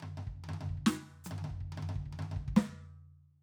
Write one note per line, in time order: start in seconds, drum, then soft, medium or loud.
0.03 floor tom medium
0.03 high tom medium
0.18 floor tom medium
0.27 kick soft
0.44 high tom medium
0.49 floor tom medium
0.54 high tom medium
0.61 floor tom medium
0.70 kick soft
0.78 kick soft
0.87 snare loud
1.25 hi-hat pedal medium
1.25 high tom medium
1.32 floor tom medium
1.39 high tom medium
1.45 floor tom medium
1.51 kick soft
1.61 kick soft
1.73 high tom medium
1.78 floor tom medium
1.83 high tom medium
1.90 floor tom medium
1.96 kick soft
2.06 kick soft
2.13 high tom medium
2.20 floor tom medium
2.20 high tom medium
2.32 floor tom medium
2.37 kick soft
2.48 kick soft
2.57 snare loud